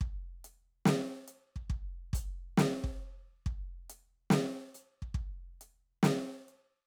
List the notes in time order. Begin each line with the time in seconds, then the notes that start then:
0.01 kick, crash, ride
0.45 closed hi-hat
0.86 snare
1.28 closed hi-hat
1.56 kick
1.70 kick
2.13 closed hi-hat, kick, snare
2.58 snare
2.84 kick
3.46 kick, ride
3.90 closed hi-hat
4.31 snare
4.75 closed hi-hat
5.02 kick
5.15 kick
5.61 closed hi-hat
6.03 snare
6.49 closed hi-hat